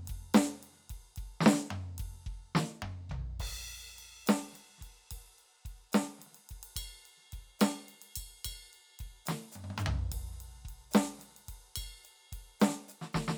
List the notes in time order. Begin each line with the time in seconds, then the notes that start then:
0.01 snare
0.03 snare, hi-hat pedal
0.08 kick, snare, ride
0.17 kick
0.35 snare, ride
0.63 ride
0.73 snare
0.80 snare
0.90 kick, ride
0.96 kick
1.17 kick, ride
1.24 kick
1.41 snare
1.47 snare
1.54 snare
1.71 mid tom
1.99 kick, ride
2.07 kick
2.21 snare
2.24 kick, snare
2.33 kick
2.37 kick
2.56 snare
2.83 kick, mid tom
3.10 kick, floor tom
3.40 kick, crash
3.47 kick
3.95 snare
3.99 ride
4.27 snare, hi-hat pedal, ride
4.53 snare, hi-hat pedal, ride
4.79 kick, snare
4.83 ride
5.11 kick, ride
5.18 kick
5.39 ride
5.66 kick, ride
5.93 snare, hi-hat pedal, ride
6.03 snare
6.19 snare, hi-hat pedal, ride
6.27 snare
6.32 snare, ride
6.38 snare
6.50 kick, ride
6.64 ride
6.76 kick, ride bell
6.82 kick
7.06 ride
7.18 snare
7.20 snare
7.33 kick, ride
7.39 kick
7.60 snare, hi-hat pedal, ride bell
7.87 hi-hat pedal, ride
7.94 snare
8.02 ride
8.16 kick, ride bell
8.45 kick, ride bell
8.52 kick
8.74 ride
9.00 kick, ride
9.07 kick
9.26 snare, hi-hat pedal, ride
9.52 hi-hat pedal, mid tom
9.64 mid tom
9.70 mid tom
9.78 hi-hat pedal, mid tom
9.87 floor tom
10.12 kick, ride
10.24 kick
10.32 snare
10.41 ride
10.65 kick, ride
10.73 kick
10.92 snare, hi-hat pedal, ride
11.19 snare, hi-hat pedal, ride
11.27 snare
11.32 snare
11.36 snare, ride
11.46 kick, hi-hat pedal, ride
11.76 kick, ride bell
11.84 kick
12.04 hi-hat pedal, ride
12.33 kick, ride
12.60 snare, hi-hat pedal, ride
12.68 snare
12.89 hi-hat pedal, ride
13.02 snare
13.13 kick, snare, hi-hat pedal
13.28 snare